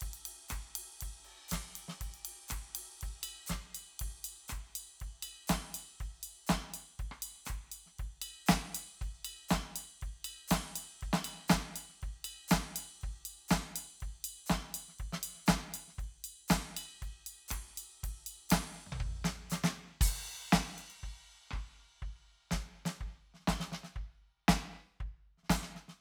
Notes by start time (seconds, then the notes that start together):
0.01 kick, ride
0.13 ride
0.25 ride
0.49 kick, cross-stick, hi-hat pedal, ride
0.75 ride
1.01 kick, ride
1.25 ride
1.48 kick, snare, hi-hat pedal, ride
1.76 ride
1.88 snare
2.01 kick, ride
2.14 ride
2.25 ride
2.48 kick, cross-stick, hi-hat pedal, ride
2.75 ride
3.01 kick, ride
3.23 ride bell
3.46 snare, hi-hat pedal, ride
3.51 kick
3.75 ride bell
3.99 kick, ride
4.24 ride bell
4.48 cross-stick, hi-hat pedal, ride
4.52 kick
4.75 ride bell
5.00 kick, ride
5.23 ride bell
5.47 kick, snare, hi-hat pedal, ride
5.74 ride bell
6.00 kick, ride
6.23 ride bell
6.47 snare, hi-hat pedal, ride
6.51 kick
6.74 ride bell
6.89 snare
6.99 kick, ride
7.11 cross-stick
7.22 ride bell
7.46 cross-stick, hi-hat pedal, ride
7.50 kick
7.72 ride bell
7.86 snare
7.99 kick, ride
8.22 ride bell
8.46 snare, hi-hat pedal, ride
8.51 kick
8.75 ride bell
9.01 kick, ride
9.25 ride bell
9.49 kick, snare, hi-hat pedal, ride
9.76 ride bell
10.02 kick, ride
10.25 ride bell
10.48 kick, snare, hi-hat pedal, ride
10.76 ride bell
11.01 kick, ride
11.13 snare
11.25 ride bell
11.48 snare, hi-hat pedal, ride
11.53 kick
11.76 ride bell
11.89 snare
12.02 kick, ride
12.24 ride bell
12.48 snare, hi-hat pedal, ride
12.53 kick
12.76 ride bell
13.01 kick, ride
13.25 ride bell
13.48 kick, snare, hi-hat pedal, ride
13.76 ride bell
14.01 kick, ride
14.24 ride bell
14.46 snare, hi-hat pedal
14.51 kick
14.74 ride bell
14.88 snare
14.99 kick, ride
15.13 snare
15.23 ride bell
15.46 kick, snare, hi-hat pedal
15.74 ride bell
15.88 snare
15.94 kick, hi-hat pedal
16.00 ride
16.24 ride bell
16.48 kick, snare, hi-hat pedal, ride
16.77 ride bell
17.02 kick, ride
17.26 ride bell
17.48 kick, cross-stick, hi-hat pedal, ride
17.77 ride bell
18.03 kick, ride
18.26 ride bell
18.49 kick, snare, hi-hat pedal, ride
18.86 high tom
18.92 floor tom
19.00 kick
19.24 snare
19.50 snare, hi-hat pedal
19.64 snare
20.01 open hi-hat, kick, crash
20.51 kick, snare, hi-hat pedal
20.78 closed hi-hat
20.90 closed hi-hat
21.03 kick
21.51 kick, cross-stick
21.56 cross-stick
22.02 kick
22.51 kick, snare
22.85 snare
23.01 kick
23.34 snare
23.39 snare
23.48 kick, snare
23.60 snare
23.72 snare
23.84 snare
23.96 kick
24.48 kick, snare
25.00 kick
25.38 snare
25.43 snare
25.50 kick, snare, hi-hat pedal
25.62 snare
25.75 snare
25.88 snare